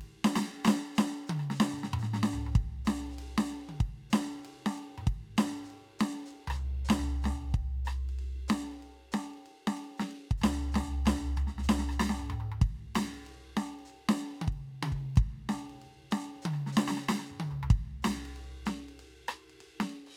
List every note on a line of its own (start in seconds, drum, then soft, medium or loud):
0.01 ride medium
0.25 snare loud
0.36 snare loud
0.64 snare loud
0.64 hi-hat pedal medium
0.68 snare loud
0.96 snare loud
0.96 hi-hat pedal medium
1.27 hi-hat pedal medium
1.27 high tom loud
1.39 cross-stick medium
1.50 snare medium
1.56 hi-hat pedal medium
1.60 snare loud
1.73 hi-hat pedal medium
1.73 mid tom medium
1.84 snare medium
1.93 mid tom loud
1.99 hi-hat pedal medium
2.03 snare medium
2.14 snare medium
2.23 snare loud
2.23 hi-hat pedal medium
2.33 floor tom medium
2.47 floor tom medium
2.55 kick loud
2.55 ride medium
2.85 snare loud
2.85 hi-hat pedal medium
2.85 ride medium
3.07 ride soft
3.11 hi-hat pedal soft
3.19 ride medium
3.38 snare loud
3.43 hi-hat pedal medium
3.50 ride medium
3.69 high tom medium
3.80 kick medium
3.80 ride medium
4.10 snare loud
4.10 hi-hat pedal medium
4.10 ride medium
4.33 ride soft
4.45 ride medium
4.66 snare loud
4.71 hi-hat pedal medium
4.78 ride medium
4.98 mid tom medium
5.07 kick medium
5.07 ride medium
5.37 snare loud
5.37 hi-hat pedal medium
5.37 ride medium
5.58 ride soft
5.64 hi-hat pedal soft
5.70 ride soft
5.99 snare loud
5.99 hi-hat pedal medium
5.99 ride medium
6.20 ride soft
6.26 hi-hat pedal medium
6.31 ride soft
6.48 cross-stick medium
6.48 floor tom loud
6.53 floor tom soft
6.53 hi-hat pedal medium
6.85 hi-hat pedal medium
6.89 snare loud
6.89 floor tom loud
6.99 floor tom loud
7.22 snare medium
7.22 floor tom loud
7.22 hi-hat pedal soft
7.50 hi-hat pedal soft
7.54 kick medium
7.54 ride soft
7.85 cross-stick medium
7.85 hi-hat pedal medium
7.85 ride soft
8.09 ride soft
8.19 ride soft
8.48 snare loud
8.48 hi-hat pedal medium
8.48 ride medium
8.72 ride soft
8.83 ride soft
9.12 snare medium
9.12 hi-hat pedal medium
9.12 ride medium
9.34 ride soft
9.46 ride soft
9.67 snare loud
9.67 hi-hat pedal soft
9.77 ride medium
9.98 snare medium
9.98 hi-hat pedal soft
10.11 ride medium
10.31 kick medium
10.38 floor tom loud
10.38 hi-hat pedal medium
10.44 snare loud
10.72 snare loud
10.72 floor tom loud
10.72 hi-hat pedal medium
11.05 snare loud
11.05 floor tom loud
11.05 hi-hat pedal medium
11.37 floor tom loud
11.37 hi-hat pedal medium
11.47 snare medium
11.58 snare medium
11.63 hi-hat pedal medium
11.69 snare loud
11.79 snare medium
11.89 cross-stick medium
11.89 hi-hat pedal medium
12.00 snare loud
12.10 snare medium
12.14 hi-hat pedal soft
12.19 mid tom medium
12.30 mid tom medium
12.40 floor tom medium
12.52 floor tom medium
12.62 kick loud
12.62 ride medium
12.95 snare loud
12.95 hi-hat pedal medium
12.95 ride medium
13.14 ride soft
13.23 hi-hat pedal soft
13.23 ride medium
13.57 snare loud
13.57 hi-hat pedal medium
13.57 ride medium
13.79 ride soft
13.85 hi-hat pedal soft
13.90 ride soft
14.09 snare loud
14.17 hi-hat pedal medium
14.17 ride soft
14.42 high tom loud
14.48 kick medium
14.53 ride soft
14.83 high tom loud
14.83 ride medium
14.92 kick soft
15.16 kick loud
15.16 ride medium
15.49 snare medium
15.49 hi-hat pedal medium
15.49 ride medium
15.70 ride soft
15.82 ride soft
16.11 snare loud
16.11 hi-hat pedal medium
16.11 ride medium
16.42 hi-hat pedal medium
16.42 high tom loud
16.54 cross-stick soft
16.67 snare soft
16.73 hi-hat pedal medium
16.77 snare loud
16.88 snare loud
16.97 cross-stick medium
17.01 hi-hat pedal medium
17.09 snare loud
17.19 cross-stick medium
17.25 hi-hat pedal soft
17.31 mid tom soft
17.40 high tom loud
17.51 floor tom medium
17.63 floor tom medium
17.70 kick loud
17.70 ride medium
18.02 snare loud
18.02 hi-hat pedal soft
18.02 ride medium
18.26 ride medium
18.36 ride medium
18.66 snare medium
18.66 hi-hat pedal medium
18.66 ride soft
18.89 ride soft
18.99 ride soft
19.28 cross-stick medium
19.28 hi-hat pedal soft
19.28 ride soft
19.50 ride soft
19.61 ride soft
19.80 snare medium
19.80 hi-hat pedal soft
19.90 ride soft
20.07 crash medium